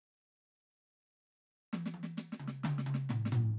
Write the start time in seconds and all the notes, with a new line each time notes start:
1.73 snare, high tom
1.86 snare
1.94 high tom
2.03 snare
2.17 snare, percussion
2.32 snare
2.40 mid tom
2.48 snare
2.63 snare, mid tom
2.78 snare
2.86 mid tom
2.94 snare
3.09 snare, floor tom
3.25 snare
3.32 floor tom